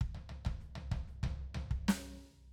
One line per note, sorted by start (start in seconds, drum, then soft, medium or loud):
0.01 kick medium
0.15 floor tom medium
0.29 floor tom medium
0.45 kick medium
0.45 floor tom medium
0.60 snare soft
0.75 floor tom medium
0.91 kick medium
0.91 floor tom medium
1.07 snare soft
1.23 kick medium
1.23 floor tom medium
1.54 floor tom medium
1.71 kick medium
1.88 snare loud